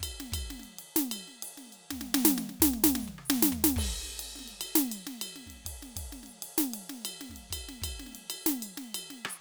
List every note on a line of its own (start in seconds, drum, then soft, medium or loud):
0.01 kick soft
0.01 hi-hat pedal soft
0.01 ride bell loud
0.21 snare medium
0.33 kick soft
0.33 ride bell loud
0.51 snare soft
0.60 snare soft
0.60 ride medium
0.79 ride loud
0.97 snare loud
0.97 hi-hat pedal medium
1.12 ride bell loud
1.28 snare soft
1.43 hi-hat pedal medium
1.43 ride loud
1.58 snare soft
1.67 snare soft
1.73 ride bell soft
1.91 kick soft
1.91 snare medium
2.02 snare medium
2.15 snare loud
2.26 snare loud
2.37 snare medium
2.37 hi-hat pedal medium
2.50 snare soft
2.61 kick soft
2.61 snare loud
2.74 snare soft
2.84 kick soft
2.84 snare loud
2.96 snare medium
3.02 kick soft
3.02 hi-hat pedal medium
3.08 mid tom soft
3.19 cross-stick soft
3.26 hi-hat pedal medium
3.31 snare loud
3.43 snare loud
3.51 floor tom medium
3.51 hi-hat pedal medium
3.65 snare loud
3.77 kick medium
3.77 hi-hat pedal loud
3.77 crash medium
3.84 kick soft
3.89 kick soft
4.04 snare soft
4.20 snare soft
4.20 ride loud
4.36 snare soft
4.40 snare soft
4.48 ride medium
4.62 ride bell loud
4.76 snare loud
4.92 ride bell medium
5.07 snare medium
5.22 ride bell loud
5.26 hi-hat pedal soft
5.36 snare soft
5.47 kick soft
5.47 snare soft
5.47 ride medium
5.57 snare soft
5.66 kick soft
5.66 hi-hat pedal soft
5.66 ride loud
5.83 snare soft
5.97 kick soft
5.97 ride loud
6.13 snare soft
6.24 snare soft
6.24 ride soft
6.29 hi-hat pedal medium
6.43 ride loud
6.59 snare loud
6.74 ride loud
6.90 snare medium
7.06 hi-hat pedal medium
7.06 ride bell loud
7.22 snare soft
7.30 kick soft
7.30 snare soft
7.37 ride medium
7.51 kick soft
7.51 hi-hat pedal soft
7.51 ride bell loud
7.69 snare soft
7.82 kick soft
7.82 ride bell loud
8.00 snare soft
8.07 snare soft
8.13 snare soft
8.13 ride medium
8.19 snare soft
8.31 ride bell loud
8.40 hi-hat pedal soft
8.47 snare medium
8.63 ride bell medium
8.78 snare medium
8.95 hi-hat pedal medium
8.95 ride bell loud
9.11 snare soft
9.26 cross-stick loud
9.30 hi-hat pedal loud